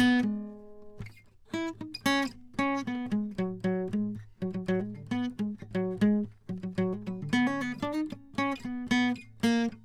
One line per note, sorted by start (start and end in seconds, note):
0.00 0.26 B3
0.25 1.06 G#3
1.55 1.75 E4
1.83 1.97 D#4
2.07 2.25 C#4
2.25 2.32 C4
2.60 2.86 C#4
2.89 3.12 B3
3.13 3.37 G#3
3.40 3.61 F#3
3.66 3.91 F#3
3.95 4.20 G#3
4.43 4.56 F#3
4.56 4.67 F#3
4.70 4.81 F#3
4.82 4.96 G#3
4.97 5.11 D3
5.41 5.54 G#3
5.76 6.00 F#3
6.03 6.29 G#3
6.51 6.65 F#3
6.65 6.75 F#3
6.79 6.94 F#3
6.95 7.07 G#3
7.09 7.20 F#3
7.24 7.34 D3
7.34 7.48 B3
7.49 7.62 C#4
7.63 7.77 B3
7.84 8.10 D#4
8.12 8.35 C#4
8.40 8.58 C#4
8.67 8.89 B3
8.93 9.18 B3
9.45 9.71 A#3